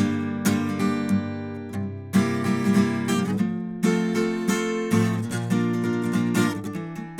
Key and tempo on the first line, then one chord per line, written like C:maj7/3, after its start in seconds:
D minor, 142 BPM
0.00 G:min
1.69 C:7/5
3.38 F:maj/3
5.07 A#:maj
6.76 E:hdim7(11)/4